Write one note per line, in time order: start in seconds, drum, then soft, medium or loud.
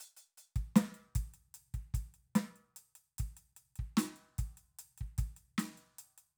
0.02 closed hi-hat medium
0.17 closed hi-hat soft
0.38 closed hi-hat soft
0.56 kick medium
0.56 closed hi-hat soft
0.76 snare loud
0.76 closed hi-hat medium
0.94 closed hi-hat soft
1.15 kick medium
1.15 closed hi-hat medium
1.34 closed hi-hat soft
1.54 closed hi-hat medium
1.74 kick soft
1.74 closed hi-hat soft
1.94 kick medium
1.94 closed hi-hat medium
2.14 closed hi-hat soft
2.35 snare loud
2.35 closed hi-hat medium
2.56 closed hi-hat soft
2.76 closed hi-hat medium
2.95 closed hi-hat soft
3.18 kick medium
3.18 closed hi-hat medium
3.37 closed hi-hat soft
3.57 closed hi-hat soft
3.76 kick soft
3.76 closed hi-hat soft
3.97 closed hi-hat medium
3.97 snare loud
4.16 closed hi-hat soft
4.38 kick medium
4.38 closed hi-hat medium
4.57 closed hi-hat soft
4.79 closed hi-hat medium
4.98 kick soft
4.98 closed hi-hat soft
5.18 kick medium
5.18 closed hi-hat medium
5.37 closed hi-hat soft
5.58 snare medium
5.58 closed hi-hat medium
5.78 closed hi-hat soft
5.99 closed hi-hat medium
6.18 closed hi-hat soft